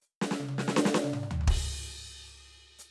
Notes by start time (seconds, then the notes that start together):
0.02 hi-hat pedal
0.22 snare
0.31 snare
0.40 high tom
0.49 high tom
0.58 snare
0.68 snare
0.76 snare
0.85 snare
0.94 snare
1.04 high tom
1.13 mid tom
1.23 high tom
1.31 floor tom
1.41 floor tom
1.44 kick, floor tom
1.50 crash
2.79 hi-hat pedal